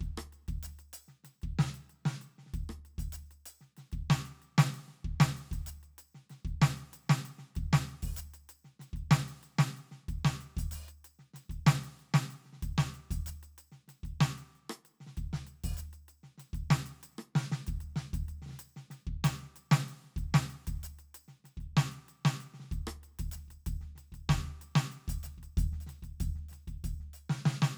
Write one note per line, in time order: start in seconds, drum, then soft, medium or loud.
0.01 kick medium
0.01 percussion soft
0.18 cross-stick medium
0.33 percussion soft
0.48 kick medium
0.48 percussion soft
0.63 percussion medium
0.68 snare soft
0.79 percussion soft
0.94 percussion medium
1.08 snare soft
1.24 snare soft
1.24 percussion soft
1.42 kick medium
1.42 percussion soft
1.59 snare loud
1.75 percussion soft
1.90 percussion soft
2.06 snare medium
2.22 percussion soft
2.39 snare soft
2.44 snare soft
2.47 snare soft
2.54 kick medium
2.54 percussion soft
2.70 cross-stick medium
2.86 percussion soft
2.99 kick medium
2.99 percussion medium
3.13 percussion medium
3.17 snare soft
3.31 percussion soft
3.46 percussion medium
3.61 snare soft
3.77 snare soft
3.77 percussion soft
3.92 kick medium
3.92 percussion soft
4.10 snare loud
4.26 percussion soft
4.42 percussion soft
4.58 snare loud
4.75 percussion soft
4.88 snare soft
5.05 kick medium
5.05 percussion soft
5.21 snare loud
5.37 percussion soft
5.52 kick medium
5.52 percussion medium
5.67 snare soft
5.67 percussion medium
5.83 percussion soft
5.99 percussion medium
6.15 snare soft
6.30 snare soft
6.30 percussion soft
6.45 kick medium
6.45 percussion soft
6.62 snare loud
6.77 percussion soft
6.94 percussion medium
7.10 snare loud
7.26 percussion medium
7.39 snare soft
7.56 kick medium
7.56 percussion soft
7.73 snare loud
7.89 percussion soft
7.93 snare soft
8.03 kick medium
8.03 percussion medium
8.17 percussion loud
8.34 percussion medium
8.49 percussion medium
8.65 snare soft
8.80 snare soft
8.80 percussion soft
8.94 kick soft
8.94 percussion soft
9.11 snare loud
9.29 percussion soft
9.43 percussion soft
9.59 snare loud
9.77 percussion soft
9.92 snare soft
10.09 kick medium
10.09 percussion soft
10.25 snare medium
10.41 percussion soft
10.57 kick medium
10.57 percussion medium
10.72 snare soft
10.72 percussion medium
10.89 percussion soft
11.05 percussion medium
11.19 snare soft
11.34 snare soft
11.34 percussion medium
11.50 kick soft
11.50 percussion soft
11.67 snare loud
11.84 percussion soft
12.00 percussion soft
12.14 snare loud
12.31 percussion soft
12.46 snare soft
12.53 snare soft
12.57 snare soft
12.63 kick medium
12.63 percussion medium
12.78 snare medium
12.94 percussion soft
13.11 kick medium
13.11 percussion medium
13.27 snare soft
13.27 percussion medium
13.43 percussion soft
13.58 percussion medium
13.72 snare soft
13.88 snare soft
13.88 percussion soft
14.04 kick soft
14.04 percussion soft
14.21 snare loud
14.38 percussion soft
14.56 percussion soft
14.70 cross-stick medium
14.86 percussion soft
15.01 snare soft
15.07 snare soft
15.17 kick medium
15.17 percussion soft
15.33 snare medium
15.47 percussion soft
15.64 kick medium
15.64 percussion medium
15.77 percussion medium
15.82 snare soft
15.93 percussion soft
16.09 percussion soft
16.24 snare soft
16.38 snare soft
16.38 percussion medium
16.54 kick medium
16.54 percussion soft
16.71 snare loud
16.75 cross-stick soft
16.86 percussion medium
17.03 percussion medium
17.19 cross-stick medium
17.36 snare loud
17.52 snare medium
17.67 kick medium
17.67 percussion medium
17.81 percussion soft
17.96 snare medium
18.14 kick medium
18.14 percussion medium
18.29 percussion soft
18.42 snare soft
18.47 snare soft
18.50 snare soft
18.51 snare soft
18.53 snare soft
18.59 percussion medium
18.77 snare soft
18.91 snare soft
18.91 percussion soft
19.07 kick medium
19.24 snare medium
19.24 percussion loud
19.43 snare soft
19.56 percussion medium
19.72 snare loud
19.89 percussion soft
20.04 snare soft
20.17 kick medium
20.17 percussion soft
20.34 snare loud
20.50 percussion soft
20.67 kick medium
20.67 percussion medium
20.84 percussion medium
20.99 percussion soft
21.15 percussion medium
21.28 snare soft
21.45 snare soft
21.45 percussion soft
21.57 kick soft
21.57 percussion soft
21.77 snare loud
21.92 percussion soft
22.09 percussion soft
22.25 snare loud
22.41 percussion soft
22.54 snare soft
22.60 snare soft
22.65 snare soft
22.72 kick medium
22.72 percussion soft
22.87 cross-stick medium
23.04 percussion soft
23.19 kick medium
23.19 percussion medium
23.32 percussion medium
23.36 snare soft
23.48 kick soft
23.48 percussion soft
23.67 kick medium
23.67 percussion medium
23.81 snare soft
23.96 snare soft
23.96 percussion soft
24.12 kick soft
24.12 percussion soft
24.29 kick medium
24.29 snare loud
24.46 snare soft
24.62 percussion medium
24.76 snare loud
24.92 percussion soft
25.08 kick medium
25.08 percussion medium
25.24 snare soft
25.24 percussion medium
25.38 kick soft
25.43 percussion soft
25.58 kick medium
25.58 percussion medium
25.73 snare soft
25.81 percussion soft
25.87 snare soft
25.87 percussion soft
26.03 kick soft
26.03 percussion soft
26.21 kick medium
26.21 percussion medium
26.36 snare soft
26.49 snare soft
26.49 percussion soft
26.53 percussion soft
26.68 kick soft
26.68 percussion soft
26.84 kick medium
26.84 percussion medium
27.00 snare soft
27.14 percussion soft
27.16 percussion soft
27.30 snare medium
27.46 snare loud
27.62 snare medium